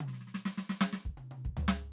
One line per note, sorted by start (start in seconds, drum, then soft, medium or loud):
0.00 high tom medium
0.08 snare soft
0.13 snare soft
0.21 snare soft
0.27 snare soft
0.34 snare medium
0.45 snare medium
0.58 snare medium
0.69 snare medium
0.81 snare loud
0.93 snare medium
1.05 kick medium
1.17 closed hi-hat soft
1.17 high tom medium
1.31 high tom medium
1.45 kick medium
1.57 floor tom loud
1.68 snare loud